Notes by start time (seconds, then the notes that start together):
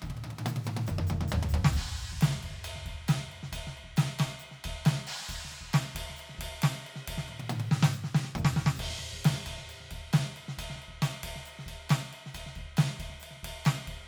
0.02 kick, high tom, percussion
0.10 kick, high tom
0.17 high tom
0.24 high tom
0.30 high tom
0.38 high tom
0.46 high tom, percussion
0.56 high tom
0.64 kick, high tom, percussion
0.76 high tom
0.87 kick, mid tom, percussion
0.96 kick, mid tom
1.07 kick, mid tom, percussion
1.21 mid tom
1.28 kick, percussion, floor tom
1.43 floor tom
1.49 kick, percussion
1.54 floor tom
1.64 snare
1.72 kick, snare, percussion
1.76 crash
1.88 cross-stick
1.98 snare
2.12 kick
2.18 kick, ride
2.22 snare, percussion
2.30 snare
2.43 kick, ride
2.50 kick, snare
2.64 ride bell, percussion
2.75 snare
2.82 kick, snare
2.86 ride
2.92 kick
3.08 snare, ride bell, percussion
3.32 ride
3.43 snare
3.52 kick, ride bell, percussion
3.58 kick
3.67 snare
3.77 ride
3.84 kick
3.96 snare, ride bell, percussion
4.19 kick, snare, ride bell
4.39 percussion, ride
4.51 snare
4.64 kick, ride bell
4.73 kick
4.85 snare, ride bell, percussion
5.07 crash
5.29 kick, ride, percussion
5.38 kick
5.40 kick
5.45 snare
5.51 snare, ride
5.61 kick
5.73 snare, ride bell, percussion
5.95 kick, ride
6.01 kick
6.10 snare
6.16 ride, percussion
6.29 snare
6.35 kick, snare
6.41 kick, ride
6.62 snare, ride, percussion
6.86 ride
6.96 snare
7.08 kick, ride, percussion
7.14 kick, snare
7.28 high tom
7.40 high tom
7.49 high tom, percussion
7.60 high tom
7.71 snare
7.83 snare
7.93 percussion
8.04 snare
8.15 snare
8.24 snare
8.35 kick, mid tom, percussion
8.45 snare
8.55 kick, snare
8.66 snare
8.76 kick, percussion, ride
8.85 kick
8.90 cross-stick
8.98 snare
9.13 kick
9.24 snare, ride, percussion
9.34 snare
9.46 kick, ride bell
9.52 kick
9.58 snare
9.69 ride, percussion
9.80 snare
9.84 snare
9.91 kick, ride
9.97 kick
10.13 snare, ride bell, percussion
10.36 ride
10.48 snare
10.58 kick, ride bell, percussion
10.64 kick
10.70 snare
10.76 snare
10.82 ride
10.88 kick
11.02 snare, ride bell, percussion
11.23 kick, ride
11.36 snare
11.45 ride, percussion
11.59 snare
11.66 kick, ride bell
11.72 kick
11.89 snare, ride bell, percussion
12.13 ride
12.26 snare
12.34 kick, ride bell, percussion
12.40 kick
12.46 snare
12.55 kick, ride bell
12.62 kick
12.65 kick
12.77 snare, ride bell, percussion
12.99 kick, ride bell
13.06 kick
13.10 snare
13.20 ride, percussion
13.31 snare
13.36 snare
13.43 kick, ride
13.49 kick
13.65 snare, ride bell, percussion
13.87 kick, ride
13.93 kick